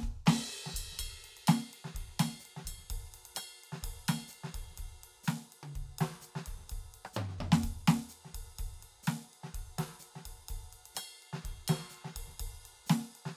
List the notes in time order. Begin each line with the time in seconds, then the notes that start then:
0.01 kick, hi-hat pedal
0.11 kick
0.27 snare, crash
0.67 snare, hi-hat pedal
0.75 kick, ride bell
0.82 kick
0.92 snare
0.97 kick, snare, ride bell
1.25 ride
1.30 cross-stick
1.37 ride
1.48 snare, hi-hat pedal, ride bell
1.70 hi-hat pedal, ride
1.85 snare
1.95 kick, hi-hat pedal, ride
2.20 snare, ride bell
2.40 hi-hat pedal
2.46 ride
2.57 snare
2.65 kick, ride bell
2.79 snare
2.91 kick, hi-hat pedal, ride
2.97 kick
3.15 cross-stick, ride
3.26 ride
3.36 cross-stick, hi-hat pedal, ride bell
3.64 ride
3.73 snare
3.83 kick, hi-hat pedal, ride
3.89 kick
4.09 snare, ride bell
4.29 hi-hat pedal
4.34 ride
4.44 snare
4.55 kick, ride
4.62 kick
4.71 snare
4.75 snare, hi-hat pedal, ride
4.79 kick
5.04 ride
5.24 hi-hat pedal
5.28 snare, ride
5.53 ride
5.64 closed hi-hat, high tom
5.76 kick, ride
5.82 kick
5.99 snare, ride
6.22 hi-hat pedal, ride
6.36 snare
6.47 kick, ride
6.58 snare
6.65 snare, hi-hat pedal
6.70 kick, ride
6.78 kick, snare
6.95 ride
7.06 cross-stick
7.14 hi-hat pedal, mid tom
7.30 snare
7.39 kick, floor tom
7.53 snare
7.63 kick, hi-hat pedal, ride
7.71 kick
7.88 snare, ride
8.09 hi-hat pedal, ride
8.25 snare
8.35 kick, ride
8.46 snare
8.59 kick, ride
8.67 kick
8.79 snare, ride
9.04 hi-hat pedal
9.08 snare, ride
9.34 ride
9.44 snare
9.55 kick, ride
9.63 kick
9.79 snare, ride
10.00 hi-hat pedal, ride
10.16 snare
10.26 kick, ride
10.49 kick, ride
10.57 kick
10.69 kick
10.73 ride
10.86 ride
10.95 cross-stick, hi-hat pedal, ride bell
11.23 ride
11.34 snare
11.45 kick, ride
11.69 snare, ride bell
11.90 hi-hat pedal
11.95 ride
12.05 snare
12.16 kick, ride
12.28 snare
12.33 snare
12.36 snare
12.39 kick, snare, ride
12.49 kick
12.66 ride
12.87 snare, hi-hat pedal, ride
13.16 ride
13.26 snare